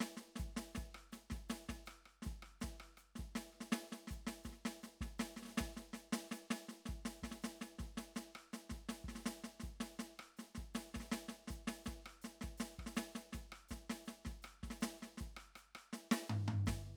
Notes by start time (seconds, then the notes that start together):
0.01 snare, hi-hat pedal
0.17 snare
0.36 snare, hi-hat pedal
0.40 kick
0.57 snare
0.75 kick, snare, hi-hat pedal
0.95 cross-stick
1.13 snare, hi-hat pedal
1.31 kick, snare
1.49 snare, hi-hat pedal
1.69 kick, snare
1.86 cross-stick, hi-hat pedal
2.06 cross-stick
2.23 snare, hi-hat pedal
2.26 kick, snare
2.43 cross-stick
2.61 kick, snare, hi-hat pedal
2.80 cross-stick
2.98 cross-stick, hi-hat pedal
3.16 kick, snare
3.36 snare, hi-hat pedal
3.53 cross-stick
3.61 snare
3.73 snare, hi-hat pedal
3.93 snare
4.08 kick, snare, hi-hat pedal
4.27 snare
4.44 kick, snare, hi-hat pedal
4.53 snare
4.66 snare
4.83 snare, hi-hat pedal
5.01 kick, snare
5.19 snare, hi-hat pedal
5.37 snare
5.43 snare
5.46 snare
5.49 snare
5.58 kick, snare, hi-hat pedal
5.77 snare
5.94 snare, hi-hat pedal
6.13 snare
6.32 snare, hi-hat pedal
6.51 snare
6.69 snare, hi-hat pedal
6.86 kick, snare
7.05 snare, hi-hat pedal
7.23 kick, snare
7.32 snare
7.43 snare, hi-hat pedal
7.62 snare
7.79 kick, snare, hi-hat pedal
7.98 snare
8.16 snare, hi-hat pedal
8.36 cross-stick
8.54 snare, hi-hat pedal
8.70 kick, snare
8.89 snare, hi-hat pedal
9.05 kick, snare
9.16 snare
9.19 snare
9.26 snare, hi-hat pedal
9.44 snare
9.60 kick, snare, hi-hat pedal
9.81 snare
10.00 snare, hi-hat pedal
10.20 cross-stick
10.37 snare, hi-hat pedal
10.55 kick, snare
10.75 snare, hi-hat pedal
10.95 kick, snare
11.00 snare
11.12 snare, hi-hat pedal
11.29 snare
11.48 kick, snare, hi-hat pedal
11.68 snare
11.85 kick, snare, hi-hat pedal
12.06 cross-stick
12.22 snare, hi-hat pedal
12.42 kick, snare
12.58 snare, hi-hat pedal
12.79 kick, cross-stick
12.87 snare
12.96 snare, hi-hat pedal
13.16 snare
13.33 kick, snare, hi-hat pedal
13.53 cross-stick
13.69 kick, snare, hi-hat pedal
13.90 snare
14.06 snare, hi-hat pedal
14.26 kick, snare
14.43 cross-stick, hi-hat pedal
14.64 kick, snare
14.71 snare
14.81 snare, hi-hat pedal
15.03 snare
15.18 kick, snare, hi-hat pedal
15.37 cross-stick
15.56 cross-stick, hi-hat pedal
15.76 cross-stick
15.93 snare
16.12 snare
16.30 floor tom
16.49 floor tom
16.66 kick, snare, hi-hat pedal